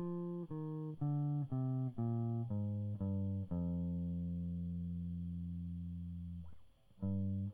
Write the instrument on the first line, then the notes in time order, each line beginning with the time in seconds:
electric guitar
0.00 F3
0.51 D#3
1.02 D3
1.53 C3
2.00 A#2
2.53 G#2
3.02 G2
3.53 F2
7.04 G2